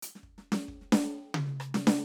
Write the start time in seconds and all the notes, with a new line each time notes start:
0.02 closed hi-hat
0.15 snare
0.23 kick
0.38 snare
0.52 snare
0.68 kick
0.81 snare
0.92 snare
1.18 snare
1.34 high tom
1.46 snare
1.60 cross-stick
1.74 snare
1.87 snare